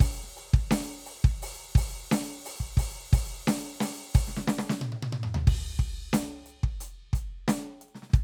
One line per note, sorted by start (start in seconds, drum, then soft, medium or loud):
0.01 open hi-hat loud
0.01 kick loud
0.23 snare soft
0.27 snare soft
0.37 open hi-hat medium
0.54 kick loud
0.71 open hi-hat loud
0.71 snare loud
1.06 open hi-hat loud
1.25 kick loud
1.43 open hi-hat loud
1.76 open hi-hat loud
1.76 kick loud
2.12 open hi-hat loud
2.12 snare loud
2.46 open hi-hat loud
2.61 kick medium
2.78 open hi-hat loud
2.78 kick loud
3.13 open hi-hat loud
3.13 kick loud
3.48 open hi-hat loud
3.48 snare loud
3.81 open hi-hat loud
3.81 snare loud
4.14 open hi-hat loud
4.14 kick loud
4.28 snare soft
4.37 snare medium
4.48 snare loud
4.59 snare medium
4.70 snare loud
4.82 high tom loud
4.93 high tom medium
5.03 high tom loud
5.24 mid tom loud
5.35 floor tom loud
5.48 kick loud
5.48 crash loud
5.80 kick medium
5.90 kick soft
6.13 closed hi-hat loud
6.13 snare loud
6.46 open hi-hat medium
6.64 kick medium
6.81 closed hi-hat loud
7.13 closed hi-hat medium
7.13 kick medium
7.48 closed hi-hat loud
7.48 snare loud
7.82 closed hi-hat medium
7.89 closed hi-hat soft
7.95 snare soft
8.03 snare soft
8.10 snare soft
8.14 kick loud
8.14 closed hi-hat medium